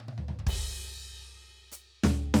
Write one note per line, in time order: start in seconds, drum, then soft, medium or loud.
0.00 mid tom medium
0.09 mid tom medium
0.18 floor tom medium
0.29 floor tom medium
0.39 kick soft
0.39 floor tom soft
0.47 kick loud
0.47 crash loud
1.72 hi-hat pedal loud
2.04 snare loud
2.04 floor tom loud
2.34 snare loud
2.34 floor tom loud